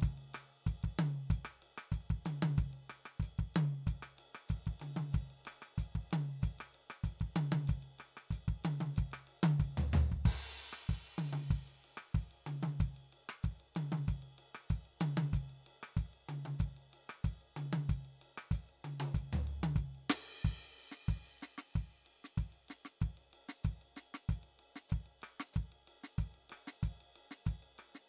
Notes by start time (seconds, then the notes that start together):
0.01 kick, hi-hat pedal, ride
0.18 ride
0.34 cross-stick, ride
0.66 kick, hi-hat pedal, ride
0.83 kick, ride
0.99 high tom, ride
1.30 kick, hi-hat pedal, ride
1.45 cross-stick, ride
1.62 ride
1.78 cross-stick
1.92 kick, hi-hat pedal, ride
2.10 kick, ride
2.26 high tom, ride
2.43 high tom
2.57 kick, hi-hat pedal, ride
2.73 ride
2.90 cross-stick, ride
3.06 cross-stick
3.20 kick, hi-hat pedal, ride
3.38 kick, ride
3.55 high tom, ride
3.87 kick, hi-hat pedal, ride
4.03 cross-stick, ride
4.18 ride
4.35 cross-stick
4.49 kick, hi-hat pedal, ride
4.66 kick, ride
4.80 high tom, ride
4.97 high tom
5.13 kick, hi-hat pedal, ride
5.30 ride
5.45 cross-stick, ride
5.62 cross-stick
5.78 kick, hi-hat pedal, ride
5.95 kick, ride
6.11 high tom, ride
6.42 kick, hi-hat pedal, ride
6.59 cross-stick, ride
6.75 ride
6.90 cross-stick
7.04 kick, hi-hat pedal, ride
7.20 kick, ride
7.36 high tom, ride
7.52 high tom
7.68 kick, hi-hat pedal, ride
7.83 ride
7.99 cross-stick, ride
8.17 cross-stick
8.31 kick, hi-hat pedal, ride
8.48 kick, ride
8.64 high tom, ride
8.81 high tom
8.96 kick, hi-hat pedal, ride
9.12 cross-stick, ride
9.27 ride
9.43 high tom
9.60 kick, hi-hat pedal, ride
9.77 floor tom
9.93 floor tom
10.12 kick
10.25 kick, hi-hat pedal, crash, ride
10.59 ride
10.73 cross-stick
10.89 kick, hi-hat pedal, ride
11.05 ride
11.18 high tom, ride
11.33 high tom
11.51 kick, hi-hat pedal, ride
11.68 ride
11.84 ride
11.97 cross-stick
12.15 kick, hi-hat pedal, ride
12.31 ride
12.47 high tom, ride
12.63 high tom
12.80 kick, hi-hat pedal, ride
12.97 ride
13.13 ride
13.29 cross-stick
13.43 kick, hi-hat pedal, ride
13.60 ride
13.75 high tom, ride
13.92 high tom
14.08 kick, hi-hat pedal, ride
14.22 ride
14.38 ride
14.55 cross-stick
14.70 kick, hi-hat pedal, ride
14.85 ride
15.01 high tom, ride
15.17 high tom
15.33 kick, hi-hat pedal, ride
15.50 ride
15.66 ride
15.83 cross-stick
15.97 kick, hi-hat pedal, ride
16.13 ride
16.29 high tom, ride
16.45 high tom
16.59 kick, hi-hat pedal, ride
16.77 ride
16.93 ride
17.09 cross-stick
17.24 kick, hi-hat pedal, ride
17.41 ride
17.57 high tom, ride
17.73 high tom
17.89 kick, hi-hat pedal, ride
18.05 ride
18.22 ride
18.38 cross-stick
18.51 kick, hi-hat pedal, ride
18.69 ride
18.84 high tom, ride
19.00 high tom
19.14 kick, hi-hat pedal, ride
19.33 floor tom
19.47 ride
19.63 high tom
19.75 kick, hi-hat pedal, ride
19.95 ride
20.10 snare, ride
20.45 kick, hi-hat pedal, ride
20.62 ride
20.80 ride
20.92 snare
21.08 kick, hi-hat pedal, ride
21.26 ride
21.42 snare, ride
21.58 snare
21.74 kick, hi-hat pedal, ride
21.91 ride
22.06 ride
22.24 snare
22.38 kick, hi-hat pedal, ride
22.52 ride
22.69 snare, ride
22.85 snare
23.01 kick, hi-hat pedal, ride
23.17 ride
23.33 ride
23.49 snare
23.64 kick, hi-hat pedal, ride
23.82 ride
23.97 snare, ride
24.14 snare
24.29 kick, hi-hat pedal, ride
24.43 ride
24.59 ride
24.76 snare
24.89 kick, hi-hat pedal, ride
25.06 ride
25.22 cross-stick, ride
25.40 snare
25.53 kick, hi-hat pedal, ride
25.72 ride
25.88 ride
26.04 snare
26.18 kick, hi-hat pedal, ride
26.34 ride
26.50 cross-stick, ride
26.67 snare
26.83 kick, hi-hat pedal, ride
27.01 ride
27.16 ride
27.31 snare
27.46 kick, hi-hat pedal, ride
27.63 ride
27.78 cross-stick, ride
27.95 snare